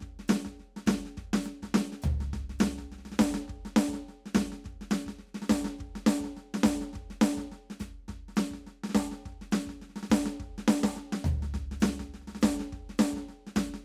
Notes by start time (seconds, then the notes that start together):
0.01 kick, snare
0.09 kick
0.20 snare
0.28 snare, hi-hat pedal
0.45 kick, snare
0.60 snare
0.77 snare
0.87 kick, snare, hi-hat pedal
0.93 kick
1.06 snare
1.18 kick, snare
1.25 kick
1.34 snare
1.44 snare, hi-hat pedal
1.63 kick, snare
1.75 snare
1.93 snare
2.02 kick, floor tom, hi-hat pedal
2.21 snare
2.34 kick, snare
2.40 kick
2.43 kick
2.50 snare
2.59 snare, hi-hat pedal
2.79 kick, snare
2.84 kick
2.92 snare
2.99 snare
3.04 snare
3.06 snare
3.12 snare
3.19 kick, snare, hi-hat pedal
3.27 kick
3.30 kick
3.35 snare
3.48 kick, snare
3.56 kick
3.66 snare
3.77 snare, hi-hat pedal
3.89 kick
3.94 snare
4.09 snare
4.26 snare
4.35 kick, snare, hi-hat pedal
4.53 snare
4.65 kick, snare
4.73 kick
4.82 snare
4.91 snare, hi-hat pedal
5.07 kick, snare
5.19 snare
5.28 snare
5.35 snare
5.42 snare
5.50 kick, snare, hi-hat pedal
5.57 kick
5.65 snare
5.79 kick, snare
5.87 kick
5.96 snare
6.07 snare, hi-hat pedal
6.21 kick, snare
6.37 snare
6.55 snare
6.64 kick, snare, hi-hat pedal
6.73 kick
6.75 kick
6.82 snare
6.94 kick, snare
7.03 kick
7.11 snare
7.21 snare, hi-hat pedal
7.37 kick, snare
7.52 snare
7.71 snare
7.80 kick, snare, hi-hat pedal
7.87 kick
8.09 kick, snare
8.16 kick
8.29 snare
8.37 snare, hi-hat pedal
8.51 kick, snare
8.67 snare
8.84 snare
8.90 snare
8.95 kick, snare, hi-hat pedal
9.12 snare
9.26 kick, snare
9.33 kick
9.42 snare
9.52 snare, hi-hat pedal
9.67 kick, snare
9.82 snare
9.90 snare
9.96 snare
10.03 snare
10.10 kick, snare, hi-hat pedal
10.16 kick
10.26 snare
10.40 kick, snare
10.59 snare
10.68 snare, hi-hat pedal
10.84 kick, snare
10.97 snare
11.13 snare
11.25 kick, floor tom, hi-hat pedal
11.35 kick
11.43 snare
11.54 kick, snare
11.62 kick
11.66 kick
11.72 snare
11.81 snare, hi-hat pedal
12.00 kick, snare
12.14 snare
12.22 snare
12.28 snare
12.35 snare
12.42 kick, snare, hi-hat pedal
12.50 kick
12.53 kick
12.60 snare
12.73 kick, snare
12.80 kick
12.90 snare
12.99 snare, hi-hat pedal
13.13 kick, snare
13.29 snare
13.47 snare
13.56 kick, snare, hi-hat pedal
13.63 kick
13.66 kick
13.74 snare